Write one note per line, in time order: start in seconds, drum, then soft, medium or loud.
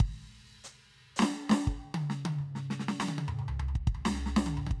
0.00 kick loud
0.00 crash medium
0.64 hi-hat pedal medium
1.16 snare loud
1.16 hi-hat pedal medium
1.22 snare loud
1.50 snare loud
1.51 snare loud
1.65 kick medium
1.65 snare soft
1.80 high tom soft
1.94 high tom loud
2.10 snare medium
2.25 high tom loud
2.39 mid tom soft
2.55 snare soft
2.70 snare medium
2.79 snare medium
2.88 snare medium
3.00 snare loud
3.08 hi-hat pedal soft
3.08 high tom medium
3.18 high tom medium
3.28 mid tom medium
3.39 mid tom medium
3.48 floor tom medium
3.60 floor tom loud
3.68 floor tom medium
3.75 kick soft
3.87 kick medium
3.95 floor tom loud
4.05 snare loud
4.26 snare medium
4.36 snare loud
4.46 hi-hat pedal soft
4.46 high tom loud
4.57 mid tom medium
4.67 high tom medium
4.71 kick soft